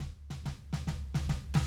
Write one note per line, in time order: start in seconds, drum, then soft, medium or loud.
0.04 kick soft
0.04 snare soft
0.04 floor tom medium
0.30 snare medium
0.30 floor tom medium
0.44 kick soft
0.44 snare medium
0.44 floor tom medium
0.73 snare medium
0.73 floor tom medium
0.87 kick soft
0.87 snare medium
0.87 floor tom medium
1.15 snare medium
1.15 floor tom medium
1.26 kick soft
1.26 snare medium
1.26 floor tom medium
1.54 snare loud
1.54 floor tom loud